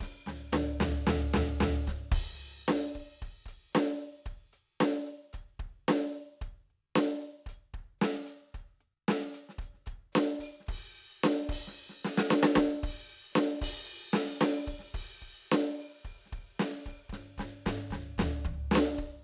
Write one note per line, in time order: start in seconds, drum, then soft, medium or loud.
0.01 open hi-hat loud
0.01 kick medium
0.01 snare soft
0.27 snare medium
0.27 floor tom medium
0.53 snare loud
0.53 floor tom loud
0.81 snare loud
0.81 floor tom loud
1.07 snare loud
1.07 floor tom loud
1.34 snare loud
1.34 floor tom loud
1.61 snare loud
1.61 floor tom loud
1.88 kick medium
1.88 snare medium
2.12 kick loud
2.12 crash loud
2.20 hi-hat pedal soft
2.36 closed hi-hat soft
2.69 closed hi-hat loud
2.69 snare loud
2.95 closed hi-hat soft
2.95 kick soft
3.23 closed hi-hat soft
3.23 kick soft
3.46 closed hi-hat medium
3.46 kick soft
3.73 snare loud
3.73 hi-hat pedal soft
3.99 closed hi-hat medium
4.26 closed hi-hat medium
4.26 kick medium
4.54 closed hi-hat soft
4.81 snare loud
5.07 closed hi-hat medium
5.34 closed hi-hat medium
5.34 kick soft
5.60 kick medium
5.60 closed hi-hat soft
5.89 snare loud
6.14 closed hi-hat soft
6.42 closed hi-hat medium
6.42 kick medium
6.71 closed hi-hat soft
6.96 snare loud
7.22 closed hi-hat medium
7.47 closed hi-hat medium
7.47 kick soft
7.74 kick soft
7.74 closed hi-hat soft
7.99 snare loud
7.99 hi-hat pedal soft
8.27 closed hi-hat medium
8.55 closed hi-hat soft
8.55 kick soft
8.81 closed hi-hat soft
9.09 snare loud
9.35 closed hi-hat medium
9.50 snare soft
9.59 closed hi-hat medium
9.59 kick medium
9.74 snare soft
9.87 open hi-hat medium
9.87 kick soft
10.13 snare loud
10.13 hi-hat pedal medium
10.40 open hi-hat loud
10.40 kick soft
10.61 snare soft
10.67 kick medium
10.67 hi-hat pedal medium
10.67 crash medium
10.93 closed hi-hat soft
11.24 snare loud
11.50 kick medium
11.50 crash loud
11.68 snare soft
11.73 hi-hat pedal medium
11.77 closed hi-hat soft
11.90 snare soft
12.05 snare medium
12.18 snare loud
12.30 snare loud
12.30 hi-hat pedal medium
12.43 snare loud
12.56 kick soft
12.56 snare loud
12.84 kick medium
12.84 crash medium
13.08 open hi-hat soft
13.33 snare loud
13.33 hi-hat pedal medium
13.62 kick medium
13.62 crash loud
13.87 open hi-hat medium
14.14 open hi-hat loud
14.14 snare loud
14.42 open hi-hat loud
14.42 snare loud
14.68 kick medium
14.80 snare soft
14.95 kick medium
14.95 crash medium
15.22 kick soft
15.52 snare loud
15.80 open hi-hat medium
16.05 open hi-hat medium
16.05 kick soft
16.26 snare soft
16.33 open hi-hat soft
16.33 kick medium
16.60 open hi-hat medium
16.60 snare loud
16.86 open hi-hat medium
16.86 kick soft
16.86 snare soft
17.10 kick soft
17.10 snare medium
17.14 mid tom soft
17.38 kick soft
17.38 snare medium
17.38 mid tom medium
17.67 kick soft
17.67 snare loud
17.67 mid tom loud
17.91 kick soft
17.91 snare medium
17.91 floor tom medium
18.19 kick medium
18.19 snare loud
18.19 floor tom loud
18.46 kick medium
18.46 floor tom medium
18.72 snare loud
18.72 hi-hat pedal medium
18.76 snare loud
18.99 kick medium